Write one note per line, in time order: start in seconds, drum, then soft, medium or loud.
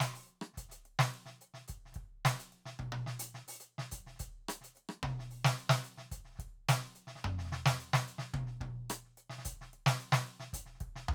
0.01 closed hi-hat medium
0.01 snare medium
0.14 open hi-hat medium
0.14 snare soft
0.27 closed hi-hat soft
0.27 hi-hat pedal soft
0.42 cross-stick medium
0.54 closed hi-hat medium
0.54 kick soft
0.54 snare soft
0.64 kick soft
0.70 closed hi-hat medium
0.70 snare soft
0.74 snare soft
0.78 snare soft
0.86 closed hi-hat soft
1.00 snare loud
1.14 closed hi-hat soft
1.27 snare soft
1.42 open hi-hat medium
1.42 hi-hat pedal medium
1.55 snare soft
1.69 closed hi-hat medium
1.69 kick soft
1.76 kick soft
1.86 snare soft
1.93 snare soft
1.93 closed hi-hat medium
1.97 kick soft
2.06 kick soft
2.26 closed hi-hat loud
2.26 snare loud
2.36 closed hi-hat medium
2.36 snare soft
2.53 closed hi-hat soft
2.66 snare medium
2.80 kick soft
2.80 high tom medium
2.93 high tom loud
3.07 snare medium
3.20 closed hi-hat loud
3.35 snare soft
3.49 open hi-hat loud
3.61 closed hi-hat medium
3.79 snare medium
3.92 closed hi-hat medium
3.92 kick soft
3.99 kick soft
4.07 snare soft
4.16 closed hi-hat medium
4.16 snare soft
4.21 kick soft
4.30 kick soft
4.49 closed hi-hat loud
4.49 cross-stick medium
4.62 open hi-hat medium
4.62 snare soft
4.76 closed hi-hat soft
4.76 hi-hat pedal soft
4.90 cross-stick medium
5.04 kick soft
5.04 high tom loud
5.10 kick soft
5.20 snare soft
5.31 open hi-hat soft
5.45 snare loud
5.59 closed hi-hat soft
5.70 snare loud
5.85 closed hi-hat medium
5.98 snare soft
6.12 closed hi-hat medium
6.12 kick soft
6.18 kick soft
6.21 kick soft
6.25 snare soft
6.32 snare soft
6.36 kick soft
6.36 snare soft
6.41 closed hi-hat medium
6.49 kick soft
6.69 closed hi-hat loud
6.69 snare loud
6.81 snare soft
6.96 closed hi-hat soft
7.08 snare soft
7.16 snare soft
7.25 kick soft
7.25 mid tom loud
7.31 kick soft
7.39 snare soft
7.45 snare soft
7.53 snare medium
7.67 snare loud
7.81 closed hi-hat medium
7.94 snare loud
8.08 closed hi-hat soft
8.19 snare medium
8.29 hi-hat pedal soft
8.34 kick soft
8.34 high tom loud
8.41 kick soft
8.44 kick soft
8.44 snare soft
8.61 kick soft
8.61 high tom loud
8.69 kick soft
8.90 closed hi-hat loud
8.90 cross-stick medium
9.05 snare soft
9.18 hi-hat pedal soft
9.18 open hi-hat medium
9.30 snare medium
9.39 snare soft
9.46 closed hi-hat loud
9.46 kick medium
9.53 kick soft
9.56 kick soft
9.62 snare soft
9.74 closed hi-hat soft
9.87 snare loud
10.01 closed hi-hat soft
10.13 snare loud
10.27 closed hi-hat soft
10.41 snare medium
10.54 closed hi-hat loud
10.54 kick soft
10.60 kick soft
10.67 snare soft
10.75 snare soft
10.81 kick medium
10.81 closed hi-hat medium
10.88 kick soft
10.96 snare medium
11.09 floor tom loud